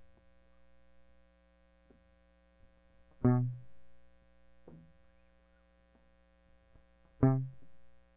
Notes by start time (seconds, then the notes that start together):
3.26 B2
7.24 C3